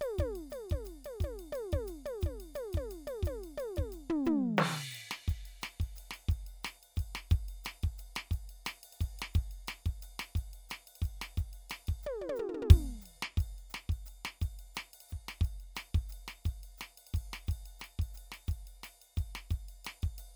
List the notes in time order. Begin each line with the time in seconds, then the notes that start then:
0.01 high tom, ride
0.18 kick, hi-hat pedal, high tom, ride
0.36 ride
0.50 hi-hat pedal, high tom, ride
0.70 kick, high tom, ride
0.85 hi-hat pedal, ride
1.05 high tom, ride
1.20 kick, hi-hat pedal, high tom, ride
1.39 ride
1.52 hi-hat pedal, high tom, ride
1.72 kick, high tom, ride
1.87 hi-hat pedal, ride
2.06 high tom, ride
2.21 kick, hi-hat pedal, ride
2.26 high tom
2.40 ride
2.55 hi-hat pedal, high tom, ride
2.73 kick, high tom, ride
2.90 hi-hat pedal, ride
3.07 high tom, ride
3.23 kick, hi-hat pedal, ride
3.27 high tom
3.44 ride
3.58 hi-hat pedal, high tom, ride
3.76 kick, high tom, ride
3.92 hi-hat pedal, ride
4.09 floor tom
4.25 floor tom, hi-hat pedal
4.57 snare, hi-hat pedal, crash
4.91 hi-hat pedal, ride
5.11 snare, ride
5.28 kick, hi-hat pedal, ride
5.46 ride
5.62 snare, hi-hat pedal, ride
5.80 kick, ride
5.96 hi-hat pedal, ride
6.11 snare, ride
6.29 kick, hi-hat pedal, ride
6.47 ride
6.64 snare, hi-hat pedal, ride
6.83 ride
6.96 kick, hi-hat pedal, ride
7.15 snare, ride
7.31 kick, hi-hat pedal, ride
7.49 ride
7.64 snare, hi-hat pedal, ride
7.83 kick, ride
7.98 hi-hat pedal, ride
8.16 snare, ride
8.31 kick, hi-hat pedal, ride
8.49 ride
8.65 snare, hi-hat pedal, ride
8.83 ride
8.93 ride
9.00 kick, hi-hat pedal, ride
9.19 snare, ride
9.34 kick, hi-hat pedal, ride
9.51 ride
9.68 snare, hi-hat pedal, ride
9.86 kick, ride
10.02 hi-hat pedal, ride
10.20 snare, ride
10.35 kick, hi-hat pedal, ride
10.53 ride
10.69 snare, hi-hat pedal, ride
10.88 ride
10.96 ride
11.02 kick, hi-hat pedal, ride
11.22 snare, ride
11.38 kick, hi-hat pedal, ride
11.53 ride
11.70 snare, hi-hat pedal, ride
11.88 kick, ride
12.03 hi-hat pedal, high tom
12.21 high tom
12.29 high tom
12.36 hi-hat pedal, mid tom
12.49 mid tom
12.54 mid tom
12.62 mid tom
12.70 kick, hi-hat pedal, ride
13.01 hi-hat pedal
13.06 ride
13.23 snare
13.38 kick, hi-hat pedal, ride
13.58 ride
13.70 hi-hat pedal
13.74 snare, ride
13.90 kick, ride
14.06 hi-hat pedal, ride
14.25 snare, ride
14.41 kick, hi-hat pedal, ride
14.59 ride
14.75 snare, hi-hat pedal, ride
14.94 ride
15.01 ride
15.09 kick, hi-hat pedal, ride
15.29 snare, ride
15.41 kick, hi-hat pedal, ride
15.60 ride
15.76 snare, hi-hat pedal, ride
15.95 kick, ride
16.09 hi-hat pedal, ride
16.28 snare, ride
16.45 kick, hi-hat pedal, ride
16.63 ride
16.78 snare, hi-hat pedal, ride
16.98 ride
17.07 ride
17.14 kick, hi-hat pedal, ride
17.33 snare, ride
17.47 kick, hi-hat pedal
17.51 ride
17.66 ride
17.79 snare, hi-hat pedal
17.84 ride
17.99 kick, ride
18.14 hi-hat pedal, ride
18.32 snare, ride
18.47 kick, hi-hat pedal, ride
18.67 ride
18.83 snare, hi-hat pedal, ride
19.02 ride
19.17 kick, hi-hat pedal, ride
19.35 snare, ride
19.50 kick, hi-hat pedal, ride
19.69 ride
19.84 snare, hi-hat pedal, ride
20.03 kick, ride
20.18 hi-hat pedal, ride